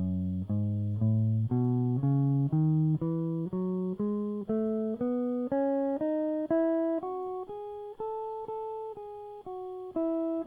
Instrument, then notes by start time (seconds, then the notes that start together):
electric guitar
0.00 F#2
0.52 G#2
1.04 A2
1.53 B2
2.05 C#3
2.54 D#3
3.03 E3
3.54 F#3
4.01 G#3
4.51 A3
5.02 B3
5.53 C#4
6.02 D#4
6.51 E4
7.03 F#4
7.48 G#4
8.01 A4
8.49 A4
9.03 G#4
9.49 F#4
9.97 E4